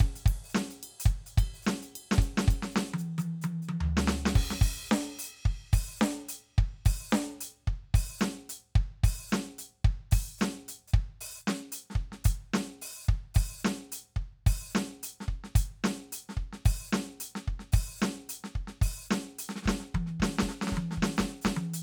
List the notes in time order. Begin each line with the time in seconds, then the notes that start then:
0.01 kick, ride
0.16 closed hi-hat
0.27 kick, ride
0.45 open hi-hat
0.50 hi-hat pedal
0.55 snare
0.71 closed hi-hat
0.84 ride bell
1.01 closed hi-hat
1.06 kick
1.27 closed hi-hat
1.38 kick, ride bell
1.55 open hi-hat
1.63 hi-hat pedal
1.67 snare
1.83 closed hi-hat
1.96 ride bell
2.12 snare
2.19 kick, ride
2.38 snare
2.49 kick, ride bell
2.63 snare
2.72 hi-hat pedal
2.77 snare
2.94 high tom
2.99 hi-hat pedal
3.19 hi-hat pedal, high tom
3.42 hi-hat pedal, high tom
3.63 hi-hat pedal
3.70 high tom
3.81 floor tom
3.98 snare
4.08 snare, hi-hat pedal
4.26 snare
4.36 kick, crash
4.51 snare
4.62 open hi-hat, kick
4.87 hi-hat pedal
4.92 snare
5.20 open hi-hat
5.24 hi-hat pedal
5.46 kick
5.74 open hi-hat, kick
5.98 snare, hi-hat pedal
6.29 closed hi-hat
6.59 kick
6.86 open hi-hat, kick
7.11 snare, hi-hat pedal
7.41 closed hi-hat
7.68 kick
7.95 open hi-hat, kick
8.19 snare, hi-hat pedal
8.50 closed hi-hat
8.76 kick
9.04 open hi-hat, kick
9.29 snare, hi-hat pedal
9.59 closed hi-hat
9.85 kick
10.12 open hi-hat, kick
10.39 snare, hi-hat pedal
10.69 closed hi-hat
10.88 hi-hat pedal
10.94 kick
11.22 open hi-hat
11.39 hi-hat pedal
11.48 snare
11.73 closed hi-hat
11.91 snare
11.96 kick
12.13 snare
12.25 closed hi-hat, kick
12.54 snare
12.82 open hi-hat
13.05 hi-hat pedal
13.09 kick
13.35 open hi-hat, kick
13.61 hi-hat pedal
13.65 snare
13.93 closed hi-hat
14.17 kick
14.47 open hi-hat, kick
14.71 hi-hat pedal
14.76 snare
15.04 closed hi-hat
15.21 snare
15.29 kick
15.45 snare
15.56 closed hi-hat, kick
15.85 snare
16.13 closed hi-hat
16.30 snare
16.38 kick
16.54 snare
16.66 open hi-hat, kick
16.88 hi-hat pedal
16.93 snare
17.21 closed hi-hat
17.36 snare
17.48 kick
17.60 snare
17.73 open hi-hat, kick
17.99 snare, hi-hat pedal
18.30 closed hi-hat
18.45 snare
18.56 kick
18.68 snare
18.82 open hi-hat, kick
19.06 hi-hat pedal
19.12 snare
19.39 closed hi-hat
19.50 snare
19.57 snare
19.63 kick, snare
19.68 snare
19.81 snare
19.88 snare
19.95 kick, high tom
20.07 snare
20.21 kick, snare
20.39 kick, snare
20.62 snare
20.68 snare
20.73 kick, snare
20.78 high tom
20.92 snare
20.98 kick
21.03 snare
21.18 kick, snare, hi-hat pedal
21.29 snare
21.42 kick, snare, hi-hat pedal
21.57 high tom
21.74 closed hi-hat